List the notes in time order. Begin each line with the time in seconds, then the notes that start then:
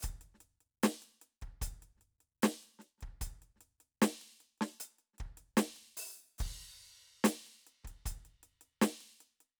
0.01 closed hi-hat, kick, hi-hat pedal
0.22 closed hi-hat
0.35 snare
0.41 closed hi-hat
0.61 closed hi-hat
0.84 closed hi-hat, snare
1.03 closed hi-hat
1.22 closed hi-hat
1.42 kick, closed hi-hat
1.62 closed hi-hat, kick
1.83 closed hi-hat
1.98 snare
2.02 closed hi-hat
2.21 closed hi-hat
2.43 closed hi-hat, snare
2.64 closed hi-hat
2.80 snare, closed hi-hat
2.99 snare, closed hi-hat
3.03 kick
3.22 closed hi-hat, kick
3.43 closed hi-hat
3.57 snare
3.62 closed hi-hat
3.81 closed hi-hat
4.03 closed hi-hat, snare
4.22 closed hi-hat
4.41 closed hi-hat
4.58 snare, closed hi-hat
4.81 closed hi-hat
4.99 closed hi-hat
5.14 snare
5.19 kick, closed hi-hat
5.38 closed hi-hat
5.58 closed hi-hat, snare
5.77 closed hi-hat
5.98 open hi-hat
6.39 kick, hi-hat pedal, crash
7.25 closed hi-hat, snare
7.47 closed hi-hat
7.68 closed hi-hat
7.85 kick, snare, closed hi-hat
8.06 closed hi-hat, kick
8.26 closed hi-hat
8.44 closed hi-hat
8.62 closed hi-hat
8.82 closed hi-hat, snare
9.01 closed hi-hat
9.21 closed hi-hat
9.41 closed hi-hat